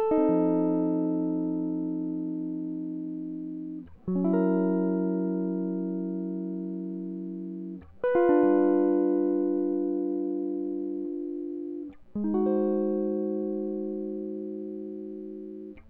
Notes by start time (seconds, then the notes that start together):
0.00 A4
0.12 D#4
0.18 C4
0.23 F3
4.09 F#3
4.16 C#4
4.25 E4
4.34 A#4
8.04 B4
8.15 F4
8.29 D4
12.16 G#3
12.24 D#4
12.35 F#4
12.47 C5